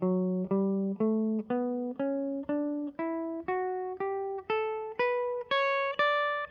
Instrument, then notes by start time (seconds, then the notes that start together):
electric guitar
0.03 F#3
0.52 G3
1.01 A3
1.51 B3
2.00 C#4
2.49 D4
2.99 E4
3.48 F#4
4.01 G4
4.50 A4
4.99 B4
5.51 C#5
5.99 D5